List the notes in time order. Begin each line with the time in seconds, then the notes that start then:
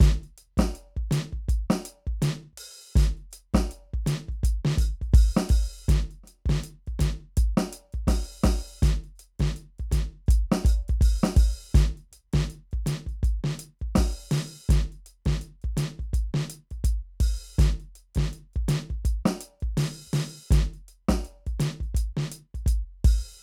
0.01 open hi-hat, kick, snare, hi-hat pedal
0.21 kick, closed hi-hat
0.38 closed hi-hat
0.57 kick, snare, closed hi-hat
0.75 closed hi-hat
0.97 kick
1.11 closed hi-hat, snare
1.33 kick
1.49 closed hi-hat, kick
1.70 snare
1.85 closed hi-hat
2.07 kick
2.22 open hi-hat, snare, hi-hat pedal
2.53 kick
2.58 open hi-hat
2.96 open hi-hat, kick, snare
3.00 hi-hat pedal
3.17 closed hi-hat
3.31 closed hi-hat, hi-hat pedal
3.54 kick, snare, closed hi-hat
3.71 closed hi-hat
3.94 kick, closed hi-hat
4.07 closed hi-hat, snare
4.29 kick, closed hi-hat
4.44 closed hi-hat, kick
4.65 snare
4.78 open hi-hat, kick
4.82 hi-hat pedal
5.02 kick, closed hi-hat
5.12 open hi-hat, kick, hi-hat pedal
5.37 snare
5.49 open hi-hat, kick
5.88 closed hi-hat, kick, snare, hi-hat pedal
6.11 closed hi-hat
6.24 closed hi-hat, snare
6.46 kick, snare
6.50 closed hi-hat
6.64 closed hi-hat
6.87 kick, closed hi-hat
7.00 closed hi-hat, kick, snare
7.37 closed hi-hat, kick
7.57 snare
7.73 closed hi-hat
7.93 kick, closed hi-hat
8.07 open hi-hat, kick, snare
8.44 open hi-hat, kick, snare
8.82 open hi-hat, kick, snare, hi-hat pedal
9.04 closed hi-hat
9.16 closed hi-hat, hi-hat pedal
9.39 kick, snare, closed hi-hat
9.56 closed hi-hat
9.79 kick, closed hi-hat
9.92 closed hi-hat, kick, snare
10.27 kick, hi-hat pedal
10.31 closed hi-hat
10.52 snare
10.65 open hi-hat, kick
10.69 hi-hat pedal
10.88 kick, closed hi-hat
11.01 open hi-hat, kick
11.24 snare
11.37 open hi-hat, kick
11.75 open hi-hat, kick, snare, hi-hat pedal
11.97 closed hi-hat
12.12 closed hi-hat, kick
12.33 kick, snare, closed hi-hat
12.50 closed hi-hat
12.71 kick, closed hi-hat
12.86 closed hi-hat, snare
13.07 kick, closed hi-hat
13.23 closed hi-hat, kick
13.44 snare
13.59 closed hi-hat
13.79 kick, closed hi-hat
13.96 open hi-hat, kick, snare
14.31 open hi-hat, snare
14.69 closed hi-hat, kick, snare, hi-hat pedal
14.92 closed hi-hat
15.06 closed hi-hat
15.26 kick, snare, closed hi-hat
15.41 closed hi-hat
15.62 kick, closed hi-hat
15.77 closed hi-hat, snare
15.99 kick, closed hi-hat
16.14 closed hi-hat, kick
16.34 snare
16.50 closed hi-hat
16.71 kick, closed hi-hat
16.84 open hi-hat, kick
17.20 open hi-hat, kick
17.59 open hi-hat, kick, snare, hi-hat pedal
17.80 closed hi-hat
17.96 closed hi-hat
18.15 kick, snare, closed hi-hat
18.33 closed hi-hat
18.54 kick, closed hi-hat
18.69 closed hi-hat, snare
18.90 kick, closed hi-hat
19.05 closed hi-hat, kick
19.26 snare
19.41 closed hi-hat
19.61 kick, closed hi-hat
19.77 open hi-hat, snare
20.07 kick
20.13 open hi-hat, snare
20.51 closed hi-hat, kick, snare, hi-hat pedal
20.74 closed hi-hat
20.88 closed hi-hat
21.09 kick, snare, closed hi-hat
21.25 closed hi-hat
21.47 kick, closed hi-hat
21.60 closed hi-hat, snare, hi-hat pedal
21.80 kick, closed hi-hat
21.95 closed hi-hat, kick
22.17 snare
22.32 closed hi-hat
22.55 kick, closed hi-hat
22.66 open hi-hat, kick
23.05 open hi-hat, kick